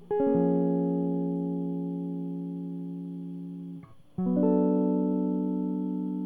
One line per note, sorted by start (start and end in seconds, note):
0.11 3.36 G#4
0.20 3.83 C#4
0.27 2.87 A#3
0.35 3.83 F3
4.19 6.25 F#3
4.26 6.25 B3
4.37 6.25 D4
4.43 6.25 A4